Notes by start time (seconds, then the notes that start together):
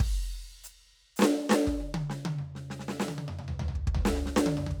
0.00 kick, crash
0.64 hi-hat pedal
1.16 snare, hi-hat pedal
1.22 snare
1.49 snare
1.51 snare
1.65 kick, snare
1.80 high tom
1.94 high tom
2.10 snare
2.25 high tom
2.38 mid tom
2.55 snare
2.70 snare
2.79 snare
2.88 snare
3.00 snare
3.08 hi-hat pedal, high tom
3.18 high tom
3.28 mid tom
3.39 mid tom
3.48 floor tom
3.59 floor tom
3.68 floor tom
3.75 kick
3.87 kick
3.95 floor tom
4.05 snare
4.26 snare
4.36 snare
4.46 hi-hat pedal, high tom
4.57 mid tom
4.66 high tom
4.71 kick